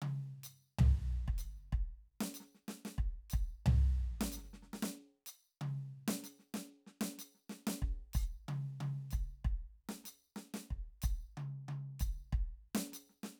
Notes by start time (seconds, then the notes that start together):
0.02 high tom
0.43 hi-hat pedal
0.79 floor tom
1.28 kick
1.38 hi-hat pedal
1.72 kick
2.21 snare
2.34 hi-hat pedal
2.40 snare
2.54 snare
2.68 snare
2.85 snare
2.98 kick
3.30 kick, hi-hat pedal
3.66 floor tom
4.21 snare
4.32 hi-hat pedal
4.37 snare
4.44 snare
4.53 snare
4.62 snare
4.73 snare
4.82 snare
5.26 hi-hat pedal
5.61 high tom
6.08 snare
6.23 snare, hi-hat pedal
6.39 snare
6.54 snare
6.87 snare
7.01 snare
7.18 snare, hi-hat pedal
7.34 snare
7.49 snare
7.67 snare
7.82 kick
8.13 kick, hi-hat pedal
8.48 high tom, percussion
8.80 closed hi-hat, high tom
9.11 kick, hi-hat pedal
9.45 kick
9.89 snare
10.04 snare, hi-hat pedal
10.36 snare
10.54 snare
10.70 kick
11.02 kick, hi-hat pedal
11.37 closed hi-hat, high tom
11.68 closed hi-hat, high tom
12.00 kick, hi-hat pedal
12.33 kick
12.75 snare
12.92 snare, hi-hat pedal
13.09 snare
13.23 snare